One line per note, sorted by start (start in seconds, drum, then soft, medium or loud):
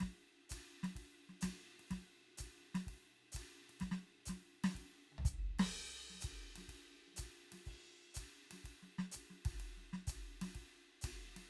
0.01 kick soft
0.01 snare soft
0.01 ride medium
0.50 kick soft
0.50 hi-hat pedal medium
0.50 ride medium
0.84 snare soft
0.84 ride medium
0.96 kick soft
0.96 ride medium
1.30 snare soft
1.42 kick soft
1.42 snare soft
1.42 hi-hat pedal medium
1.42 ride medium
1.80 ride soft
1.87 hi-hat pedal soft
1.91 kick soft
1.91 snare soft
1.91 ride medium
2.02 snare soft
2.38 kick soft
2.38 hi-hat pedal medium
2.38 ride medium
2.75 snare soft
2.75 ride medium
2.87 kick soft
2.87 ride medium
3.33 kick soft
3.33 hi-hat pedal medium
3.37 ride medium
3.70 ride soft
3.79 kick soft
3.79 snare soft
3.79 hi-hat pedal soft
3.79 ride medium
3.92 snare soft
4.26 kick soft
4.26 snare soft
4.26 hi-hat pedal medium
4.26 ride medium
4.65 snare medium
4.65 ride medium
4.75 kick soft
4.75 ride medium
5.13 high tom soft
5.19 floor tom medium
5.26 kick soft
5.26 hi-hat pedal medium
5.60 snare medium
5.60 crash medium
5.73 hi-hat pedal soft
6.11 snare soft
6.15 snare soft
6.21 kick soft
6.21 hi-hat pedal medium
6.21 ride medium
6.57 snare soft
6.57 ride medium
6.69 kick soft
6.69 ride medium
7.08 snare soft
7.12 snare soft
7.15 snare soft
7.15 hi-hat pedal medium
7.19 kick soft
7.19 ride medium
7.53 snare soft
7.53 ride medium
7.66 kick soft
7.66 hi-hat pedal soft
7.66 ride medium
8.15 kick soft
8.15 hi-hat pedal medium
8.15 ride medium
8.52 snare soft
8.52 ride medium
8.65 kick soft
8.65 ride medium
8.83 snare soft
8.99 snare soft
9.12 kick soft
9.12 hi-hat pedal medium
9.12 ride medium
9.31 snare soft
9.46 kick soft
9.46 ride medium
9.59 hi-hat pedal soft
9.59 ride medium
9.78 snare soft
9.94 snare soft
10.08 kick soft
10.08 hi-hat pedal medium
10.08 ride medium
10.42 snare soft
10.42 ride medium
10.56 kick soft
10.56 ride medium
11.02 kick soft
11.02 hi-hat pedal medium
11.02 ride loud
11.37 snare soft
11.37 ride medium